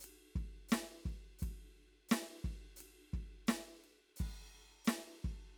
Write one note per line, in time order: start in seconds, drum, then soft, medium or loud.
0.01 hi-hat pedal medium
0.05 ride medium
0.36 kick soft
0.36 ride soft
0.69 snare loud
0.69 hi-hat pedal medium
0.69 ride medium
1.06 kick soft
1.06 ride soft
1.39 kick soft
1.39 hi-hat pedal medium
1.44 ride soft
2.09 snare loud
2.09 hi-hat pedal medium
2.09 ride medium
2.45 kick soft
2.77 hi-hat pedal medium
2.81 ride soft
3.14 kick soft
3.48 snare loud
3.48 hi-hat pedal medium
3.48 ride soft
3.85 ride soft
4.17 kick soft
4.17 hi-hat pedal medium
4.17 crash soft
4.85 snare loud
4.85 hi-hat pedal medium
4.90 ride medium
5.25 kick soft